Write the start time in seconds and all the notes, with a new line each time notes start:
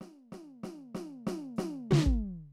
0.01 snare, floor tom
0.32 snare, floor tom
0.63 snare, floor tom
0.95 snare, floor tom
1.27 snare, floor tom
1.56 snare, floor tom, hi-hat pedal
1.90 snare, floor tom
2.06 kick